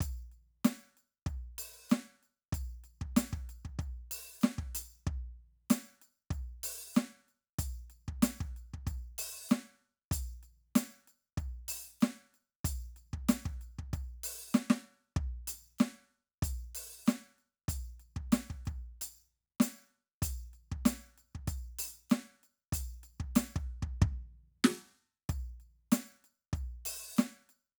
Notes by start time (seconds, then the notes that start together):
0.01 kick, percussion
0.32 percussion
0.65 snare, percussion
0.97 percussion
1.27 kick, percussion
1.59 percussion
1.90 snare, percussion
1.93 percussion
2.23 percussion
2.53 kick, percussion
2.84 percussion
3.02 kick
3.17 snare, percussion
3.33 kick
3.50 percussion
3.65 kick
3.79 kick, percussion
4.12 percussion
4.42 snare, percussion
4.45 percussion
4.59 kick
4.75 percussion
5.07 kick
5.70 snare, percussion
6.02 percussion
6.31 kick, percussion
6.64 percussion
6.95 snare, percussion
6.97 percussion
7.29 percussion
7.59 kick, percussion
7.90 percussion
8.08 kick
8.23 snare, percussion
8.41 kick
8.57 percussion
8.74 kick
8.87 kick, percussion
9.19 percussion
9.49 snare, percussion
9.52 percussion
10.12 kick, percussion
10.43 percussion
10.76 snare, percussion
11.08 percussion
11.38 kick, percussion
11.69 percussion
12.01 snare, percussion
12.03 percussion
12.34 percussion
12.65 kick, percussion
12.97 percussion
13.14 kick
13.29 snare, percussion
13.46 kick
13.62 percussion
13.79 kick
13.94 kick, percussion
14.24 percussion
14.55 snare, percussion
14.70 snare
15.17 kick
15.48 percussion
15.79 snare, percussion
15.81 percussion
16.43 kick, percussion
16.75 percussion
17.07 snare, percussion
17.09 percussion
17.39 percussion
17.69 kick, percussion
18.00 percussion
18.17 kick
18.33 snare, percussion
18.50 kick
18.66 kick, percussion
19.02 percussion
19.61 snare, percussion
20.23 kick, percussion
20.54 percussion
20.72 kick
20.86 snare, percussion
21.18 percussion
21.35 kick
21.48 kick, percussion
21.79 percussion
22.10 snare, percussion
22.12 percussion
22.44 percussion
22.73 kick, percussion
23.04 percussion
23.20 kick
23.36 snare, percussion
23.56 kick
23.83 kick
24.02 kick
24.65 snare
25.30 kick, percussion
25.60 percussion
25.92 snare, percussion
26.25 percussion
26.53 kick, percussion
26.86 percussion
27.17 snare, percussion
27.20 percussion
27.50 percussion